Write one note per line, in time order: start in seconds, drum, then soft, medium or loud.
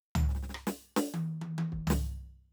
0.15 floor tom loud
0.29 snare soft
0.35 snare soft
0.43 snare soft
0.49 snare soft
0.54 cross-stick medium
0.67 snare loud
0.96 snare loud
1.14 high tom loud
1.41 high tom medium
1.58 high tom loud
1.72 kick medium
1.87 snare loud
1.87 floor tom loud